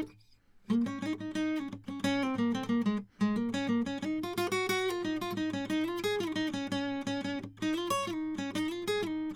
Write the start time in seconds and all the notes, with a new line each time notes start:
0.70 A#3
0.87 C#4
1.03 D#4
1.14 D#4
1.36 D#4
1.57 C#4
1.73 C#4
1.89 C#4
2.04 C#4
2.23 C4
2.39 A#3
2.55 C4
2.70 A#3
2.87 G#3
3.21 G#3
3.37 A#3
3.54 C#4
3.69 A#3
3.87 C#4
4.03 D#4
4.24 F4
4.38 F4
4.52 F#4
4.70 F#4
4.90 F4
5.05 D#4
5.22 F4
5.38 D#4
5.55 C#4
5.70 D#4
5.84 F4
6.04 G#4
6.21 E4
6.37 D#4
6.54 C#4
6.72 C#4
7.07 C#4
7.25 C#4
7.63 D#4
7.75 F4
7.91 C#5
8.08 D#4
8.39 C#4
8.56 D#4
8.69 F4
8.88 G#4
9.04 D#4